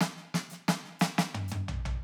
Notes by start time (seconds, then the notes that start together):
0.01 snare
0.17 snare
0.34 snare
0.50 snare, hi-hat pedal
0.68 snare
0.84 snare
0.99 snare, hi-hat pedal
1.18 snare
1.35 high tom
1.48 hi-hat pedal, high tom
1.68 floor tom
1.85 floor tom